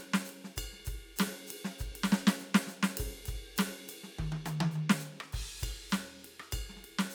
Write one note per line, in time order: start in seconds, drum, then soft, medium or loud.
0.01 ride soft
0.14 snare loud
0.25 hi-hat pedal medium
0.30 ride medium
0.45 snare soft
0.56 kick soft
0.56 hi-hat pedal medium
0.56 ride bell loud
0.73 snare soft
0.80 snare soft
0.85 kick soft
0.85 snare soft
0.85 hi-hat pedal medium
0.85 ride medium
1.16 snare loud
1.16 hi-hat pedal medium
1.16 ride loud
1.27 snare soft
1.47 hi-hat pedal medium
1.47 ride loud
1.65 snare medium
1.79 kick soft
1.79 hi-hat pedal medium
1.79 ride soft
1.89 kick soft
1.96 ride medium
2.04 snare medium
2.08 hi-hat pedal medium
2.12 snare loud
2.27 snare loud
2.39 snare soft
2.39 hi-hat pedal medium
2.55 snare loud
2.67 snare medium
2.67 hi-hat pedal medium
2.83 snare loud
2.97 kick soft
2.97 hi-hat pedal medium
2.97 ride loud
3.06 kick soft
3.09 kick soft
3.25 snare soft
3.25 hi-hat pedal medium
3.25 ride medium
3.28 kick soft
3.28 snare soft
3.35 kick soft
3.56 snare loud
3.56 hi-hat pedal medium
3.56 ride loud
3.68 snare soft
3.88 hi-hat pedal medium
3.88 ride medium
4.04 snare soft
4.16 kick soft
4.16 hi-hat pedal soft
4.16 high tom loud
4.28 kick soft
4.32 high tom medium
4.46 hi-hat pedal loud
4.46 high tom loud
4.61 high tom loud
4.71 hi-hat pedal soft
4.76 high tom medium
4.90 snare loud
5.00 hi-hat pedal medium
5.21 cross-stick medium
5.33 kick soft
5.33 crash medium
5.43 kick soft
5.59 kick soft
5.59 snare soft
5.59 hi-hat pedal medium
5.64 ride bell loud
5.69 kick soft
5.72 kick soft
5.90 snare loud
5.90 hi-hat pedal medium
5.90 ride soft
5.90 floor tom soft
6.05 snare soft
6.19 hi-hat pedal soft
6.25 ride medium
6.40 cross-stick medium
6.52 kick soft
6.52 hi-hat pedal medium
6.52 ride bell loud
6.59 kick soft
6.62 kick soft
6.70 snare soft
6.77 snare soft
6.77 hi-hat pedal soft
6.85 ride medium
6.99 snare loud
7.04 snare soft
7.10 hi-hat pedal medium